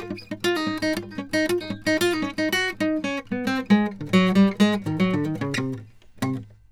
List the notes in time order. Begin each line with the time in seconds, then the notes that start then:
0.00 F4
0.33 F4
0.46 F4
0.58 D#4
0.69 C#4
0.84 D#4
0.99 F4
1.14 D#4
1.20 C#4
1.35 D#4
1.51 F4
1.63 D#4
1.72 C#4
1.88 D#4
2.03 F4
2.15 D#4
2.24 C#4
2.40 D#4
2.54 F#4
2.82 D#4
3.06 C#4
3.34 B3
3.49 C4
3.72 G#3
4.02 D3
4.15 F#3
4.37 G3
4.62 G#3
4.88 D#3
5.01 F#3
5.16 D3
5.27 D#3
5.43 C#3
5.60 C3
6.24 C3